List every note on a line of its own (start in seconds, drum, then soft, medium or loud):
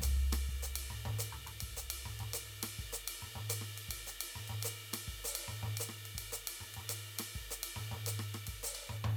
0.01 kick medium
0.01 hi-hat pedal loud
0.01 ride loud
0.32 cross-stick medium
0.32 ride loud
0.49 kick soft
0.62 hi-hat pedal loud
0.75 ride loud
0.90 high tom medium
1.05 high tom medium
1.19 hi-hat pedal loud
1.19 ride loud
1.32 floor tom medium
1.46 floor tom medium
1.46 ride medium
1.60 kick soft
1.60 ride loud
1.77 hi-hat pedal loud
1.90 ride loud
2.05 high tom medium
2.19 high tom medium
2.19 ride medium
2.33 hi-hat pedal loud
2.33 ride loud
2.63 cross-stick medium
2.63 ride loud
2.79 kick medium
2.93 hi-hat pedal loud
3.08 ride loud
3.22 high tom medium
3.35 high tom medium
3.50 hi-hat pedal loud
3.50 ride loud
3.61 cross-stick soft
3.78 ride medium
3.88 kick soft
3.88 ride loud
4.07 hi-hat pedal medium
4.21 ride loud
4.35 high tom medium
4.48 high tom medium
4.48 ride medium
4.63 hi-hat pedal loud
4.63 ride loud
4.93 cross-stick medium
4.93 ride loud
5.08 kick medium
5.24 hi-hat pedal loud
5.35 ride loud
5.48 high tom medium
5.63 high tom medium
5.77 hi-hat pedal loud
5.77 ride loud
5.89 cross-stick soft
6.05 ride medium
6.15 kick soft
6.15 ride loud
6.32 hi-hat pedal loud
6.47 ride loud
6.60 high tom medium
6.74 high tom medium
6.74 ride medium
6.89 hi-hat pedal loud
6.89 ride loud
7.19 cross-stick medium
7.19 ride loud
7.35 kick soft
7.51 hi-hat pedal loud
7.63 ride loud
7.76 high tom medium
7.91 high tom medium
8.06 hi-hat pedal loud
8.06 ride loud
8.19 cross-stick medium
8.34 cross-stick medium
8.34 ride medium
8.47 kick soft
8.47 ride medium
8.63 hi-hat pedal loud
8.75 ride bell medium
8.89 high tom medium
9.04 high tom medium